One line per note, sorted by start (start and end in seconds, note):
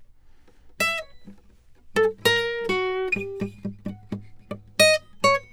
0.81 0.98 E5
0.99 1.06 D#5
1.97 2.13 A4
2.26 2.73 A#4
2.70 3.09 F#4
3.09 3.20 F4
4.80 5.02 D#5
5.24 5.42 C#5